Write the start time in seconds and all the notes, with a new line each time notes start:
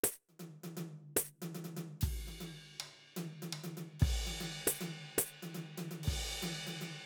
0.04 high tom
0.29 high tom
0.39 high tom
0.63 high tom
0.77 high tom
1.16 high tom
1.42 high tom
1.54 high tom
1.64 high tom
1.76 high tom
2.01 kick, ride
2.27 high tom
2.40 high tom
2.67 high tom
2.80 high tom
3.16 high tom
3.42 high tom
3.52 high tom
3.64 high tom
3.77 high tom
4.00 kick, ride
4.26 high tom
4.40 high tom
4.67 high tom
4.81 high tom
5.18 high tom
5.42 high tom
5.54 high tom
5.78 high tom
5.91 high tom
6.03 ride
6.07 kick
6.42 high tom
6.67 high tom
6.81 high tom